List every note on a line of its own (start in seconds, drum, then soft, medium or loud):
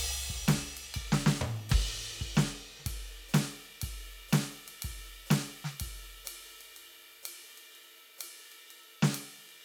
0.31 kick medium
0.44 hi-hat pedal soft
0.49 snare loud
0.49 ride loud
0.78 ride medium
0.95 kick medium
0.95 ride bell loud
1.13 snare loud
1.27 snare loud
1.42 high tom loud
1.70 kick loud
1.70 crash medium
1.70 ride loud
2.22 kick medium
2.35 snare loud
2.35 hi-hat pedal soft
2.80 snare soft
2.87 kick medium
2.87 snare soft
2.87 ride loud
3.29 hi-hat pedal soft
3.35 snare loud
3.35 ride loud
3.82 kick medium
3.82 ride loud
4.29 hi-hat pedal soft
4.33 snare loud
4.33 ride loud
4.69 ride medium
4.83 kick medium
4.83 ride loud
5.27 hi-hat pedal soft
5.31 snare loud
5.31 ride loud
5.65 snare medium
5.81 kick medium
5.81 ride loud
6.26 hi-hat pedal medium
6.26 ride loud
6.62 ride medium
6.77 ride medium
7.24 hi-hat pedal soft
7.24 ride loud
7.58 ride medium
7.76 ride soft
8.19 hi-hat pedal soft
8.19 ride loud
8.53 ride soft
8.71 ride medium
9.03 snare loud
9.11 hi-hat pedal medium
9.11 ride loud
9.50 ride soft